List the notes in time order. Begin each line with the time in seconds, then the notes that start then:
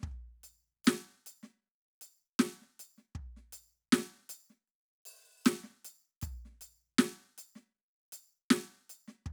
0.01 kick, snare
0.07 snare
0.12 kick
0.44 percussion
0.86 snare, percussion
1.27 percussion
1.44 snare
2.02 percussion
2.40 snare
2.62 snare
2.68 snare
2.80 percussion
2.99 snare
3.16 kick
3.37 snare
3.54 percussion
3.93 snare
4.00 snare
4.17 snare
4.23 snare
4.30 percussion
4.51 snare
4.69 percussion
5.06 percussion
5.46 snare, percussion
5.64 snare
5.71 snare
5.86 percussion
6.23 kick, percussion
6.27 percussion
6.46 snare
6.50 snare
6.52 snare
6.56 snare
6.62 percussion
7.00 snare
7.39 percussion
7.57 snare
8.13 percussion
8.51 snare
8.91 percussion
9.09 snare
9.27 kick, percussion